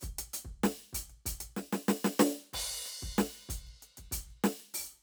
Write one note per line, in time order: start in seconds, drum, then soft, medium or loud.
0.01 closed hi-hat medium
0.01 kick medium
0.01 hi-hat pedal medium
0.19 closed hi-hat loud
0.34 closed hi-hat loud
0.45 kick soft
0.64 snare loud
0.79 closed hi-hat soft
0.93 closed hi-hat loud
0.93 kick soft
1.10 closed hi-hat soft
1.26 closed hi-hat loud
1.26 kick medium
1.41 closed hi-hat loud
1.57 snare medium
1.73 snare loud
1.88 snare loud
2.05 snare loud
2.20 snare loud
2.53 kick soft
2.53 crash loud
2.67 closed hi-hat soft
2.86 closed hi-hat medium
3.03 kick medium
3.03 closed hi-hat soft
3.18 snare loud
3.35 closed hi-hat soft
3.49 closed hi-hat loud
3.49 kick medium
3.67 closed hi-hat soft
3.83 closed hi-hat medium
3.97 kick soft
3.97 closed hi-hat medium
4.12 closed hi-hat loud
4.12 kick soft
4.31 closed hi-hat soft
4.44 snare loud
4.60 closed hi-hat soft
4.74 open hi-hat loud
4.78 kick soft
4.92 open hi-hat soft